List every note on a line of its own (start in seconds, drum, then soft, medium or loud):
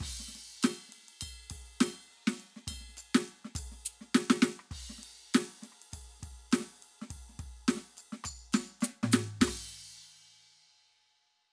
0.01 kick medium
0.01 crash loud
0.09 kick soft
0.20 snare soft
0.28 snare soft
0.35 snare soft
0.35 ride medium
0.63 snare loud
0.63 ride bell loud
0.63 percussion medium
0.89 snare soft
0.89 ride medium
0.98 snare soft
1.03 snare soft
1.08 snare soft
1.08 ride medium
1.20 kick soft
1.20 ride bell loud
1.20 percussion soft
1.50 kick soft
1.50 ride loud
1.81 snare loud
1.81 ride bell loud
1.81 percussion medium
1.93 snare soft
2.08 percussion soft
2.08 ride soft
2.28 snare loud
2.36 percussion medium
2.40 ride medium
2.57 snare soft
2.68 kick soft
2.68 snare soft
2.68 ride bell loud
2.74 kick soft
2.77 kick soft
2.77 snare soft
2.89 snare soft
2.98 ride medium
2.98 percussion loud
3.15 snare loud
3.23 percussion soft
3.28 ride soft
3.45 snare soft
3.56 kick medium
3.56 ride loud
3.56 percussion loud
3.72 snare soft
3.86 floor tom loud
4.01 snare soft
4.15 snare loud
4.30 snare loud
4.43 snare loud
4.60 cross-stick soft
4.71 kick soft
4.71 crash medium
4.78 kick soft
4.81 kick soft
4.90 snare soft
4.99 snare soft
5.04 ride medium
5.34 snare loud
5.34 ride loud
5.34 percussion soft
5.63 snare soft
5.63 ride medium
5.73 cross-stick soft
5.82 ride medium
5.93 kick soft
5.93 ride loud
5.93 percussion medium
6.20 kick soft
6.20 snare soft
6.20 ride medium
6.32 kick soft
6.52 snare loud
6.52 ride loud
6.52 percussion medium
6.61 snare soft
6.83 ride medium
7.02 snare soft
7.11 kick soft
7.11 ride medium
7.17 kick soft
7.29 snare soft
7.34 snare soft
7.40 kick soft
7.40 ride medium
7.46 kick soft
7.69 snare loud
7.69 ride loud
7.69 percussion medium
7.77 snare soft
7.98 ride medium
7.98 percussion medium
8.13 snare medium
8.25 kick soft
8.25 cross-stick medium
8.25 percussion medium
8.25 percussion loud
8.31 kick soft
8.53 snare loud
8.53 percussion medium
8.53 percussion loud
8.81 snare medium
8.81 percussion medium
8.81 floor tom loud
9.03 snare loud
9.03 floor tom loud
9.12 snare loud
9.12 percussion medium
9.12 floor tom loud
9.41 kick medium
9.41 snare loud
9.41 percussion loud
9.41 crash loud
9.48 kick soft
9.48 cross-stick medium